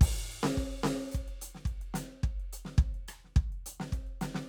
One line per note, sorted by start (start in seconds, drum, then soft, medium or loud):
0.01 open hi-hat loud
0.01 kick loud
0.01 crash medium
0.43 snare medium
0.57 kick medium
0.57 open hi-hat soft
0.71 open hi-hat soft
0.83 open hi-hat medium
0.83 snare medium
0.97 snare soft
1.11 kick medium
1.11 hi-hat pedal medium
1.16 closed hi-hat soft
1.28 closed hi-hat soft
1.41 closed hi-hat loud
1.55 snare soft
1.65 kick medium
1.65 closed hi-hat soft
1.81 closed hi-hat soft
1.94 closed hi-hat medium
1.94 snare medium
2.11 snare soft
2.23 kick medium
2.23 snare soft
2.23 closed hi-hat soft
2.40 closed hi-hat soft
2.53 closed hi-hat medium
2.65 snare soft
2.78 kick loud
2.78 closed hi-hat soft
2.94 closed hi-hat soft
3.08 closed hi-hat medium
3.08 cross-stick medium
3.24 snare soft
3.36 kick loud
3.36 closed hi-hat soft
3.52 closed hi-hat soft
3.66 closed hi-hat loud
3.80 snare medium
3.92 kick medium
3.92 closed hi-hat soft
4.06 closed hi-hat soft
4.21 closed hi-hat medium
4.21 snare medium
4.34 snare medium